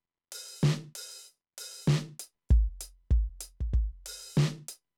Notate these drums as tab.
Hi-hat |--o-p-o-p-o-p-x-|p-x---x---o-p-x-|
Snare  |----o-------o---|------------o---|
Kick   |----------------|o---o--go-------|